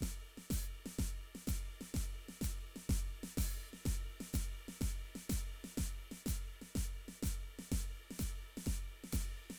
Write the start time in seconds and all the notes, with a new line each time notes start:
0.01 kick, snare, ride
0.38 snare
0.50 kick, snare, hi-hat pedal, ride
0.86 snare
0.97 kick, snare, hi-hat pedal, ride
1.35 snare
1.47 kick, snare, hi-hat pedal, ride
1.81 snare
1.94 kick, snare, ride
2.29 snare
2.41 kick, snare, hi-hat pedal, ride
2.76 snare
2.89 kick, snare, ride
3.23 snare
3.37 kick, snare, hi-hat pedal, ride
3.73 snare
3.85 kick, snare, ride
4.20 snare
4.33 kick, snare, hi-hat pedal, ride
4.68 snare
4.79 kick, snare, hi-hat pedal, ride
5.15 snare
5.29 kick, snare, hi-hat pedal, ride
5.64 snare
5.76 kick, snare, hi-hat pedal, ride
6.11 snare
6.26 kick, snare, hi-hat pedal, ride
6.62 snare
6.75 kick, snare, hi-hat pedal, ride
7.08 snare
7.23 kick, snare, hi-hat pedal, ride
7.59 snare
7.70 kick, snare, hi-hat pedal, ride
8.11 snare
8.19 kick, snare, hi-hat pedal, ride
8.57 snare
8.66 kick, snare, ride
9.04 snare
9.12 kick, snare, hi-hat pedal, ride
9.50 snare